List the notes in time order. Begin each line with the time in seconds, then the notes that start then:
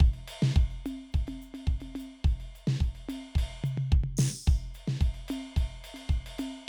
0.01 kick, hi-hat pedal, ride
0.15 ride
0.29 hi-hat pedal, ride
0.44 snare
0.58 kick, ride
0.72 ride
0.87 hi-hat pedal, high tom, ride
1.13 kick, hi-hat pedal, ride
1.29 high tom, ride bell
1.43 hi-hat pedal
1.56 high tom, ride bell
1.69 kick, hi-hat pedal
1.82 high tom, ride bell
1.97 high tom, ride bell
2.01 hi-hat pedal
2.26 kick, ride
2.42 ride
2.57 hi-hat pedal, ride bell
2.69 snare
2.82 kick, hi-hat pedal, ride
2.97 ride
3.10 hi-hat pedal, high tom, ride
3.36 kick, hi-hat pedal, ride
3.66 floor tom, hi-hat pedal
3.79 floor tom
3.94 kick
4.05 floor tom
4.19 snare, hi-hat pedal, crash
4.48 kick, hi-hat pedal, ride
4.76 hi-hat pedal, ride
4.89 snare
5.02 kick, hi-hat pedal, ride
5.16 ride
5.30 hi-hat pedal, high tom, ride
5.58 kick, hi-hat pedal, ride
5.86 hi-hat pedal, ride
5.96 high tom, ride
6.11 kick, hi-hat pedal
6.28 ride
6.40 hi-hat pedal, high tom, ride